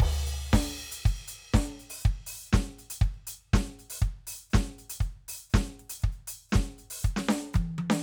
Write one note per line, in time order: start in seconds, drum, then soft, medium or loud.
0.01 kick loud
0.01 crash loud
0.15 closed hi-hat soft
0.27 closed hi-hat medium
0.54 kick loud
0.54 snare loud
0.54 crash loud
0.79 closed hi-hat soft
0.92 closed hi-hat loud
1.06 closed hi-hat medium
1.06 kick loud
1.16 closed hi-hat soft
1.29 closed hi-hat loud
1.54 kick loud
1.54 snare loud
1.54 hi-hat pedal soft
1.66 closed hi-hat soft
1.80 closed hi-hat soft
1.91 open hi-hat loud
2.02 kick loud
2.02 closed hi-hat soft
2.02 hi-hat pedal soft
2.13 closed hi-hat soft
2.27 open hi-hat loud
2.43 open hi-hat soft
2.47 hi-hat pedal soft
2.54 kick loud
2.54 snare loud
2.79 closed hi-hat medium
2.91 closed hi-hat loud
3.02 kick loud
3.02 closed hi-hat soft
3.15 closed hi-hat soft
3.28 closed hi-hat loud
3.42 closed hi-hat soft
3.54 kick loud
3.54 snare loud
3.67 closed hi-hat soft
3.80 closed hi-hat medium
3.91 open hi-hat loud
3.98 hi-hat pedal soft
4.03 kick loud
4.03 closed hi-hat soft
4.13 closed hi-hat soft
4.28 open hi-hat loud
4.51 snare loud
4.51 hi-hat pedal soft
4.55 kick loud
4.79 closed hi-hat soft
4.91 closed hi-hat loud
4.97 hi-hat pedal soft
5.01 closed hi-hat soft
5.01 kick loud
5.13 closed hi-hat soft
5.29 open hi-hat loud
5.51 hi-hat pedal soft
5.55 kick loud
5.55 snare loud
5.67 closed hi-hat soft
5.80 closed hi-hat soft
5.90 closed hi-hat loud
6.00 closed hi-hat soft
6.00 hi-hat pedal soft
6.04 kick loud
6.13 closed hi-hat soft
6.28 open hi-hat loud
6.42 open hi-hat soft
6.50 snare loud
6.50 hi-hat pedal soft
6.56 kick loud
6.66 closed hi-hat soft
6.79 closed hi-hat soft
6.91 open hi-hat loud
7.03 closed hi-hat medium
7.03 kick loud
7.03 hi-hat pedal soft
7.17 snare loud
7.29 snare loud
7.54 kick loud
7.54 hi-hat pedal medium
7.54 high tom loud
7.79 high tom loud
7.91 snare loud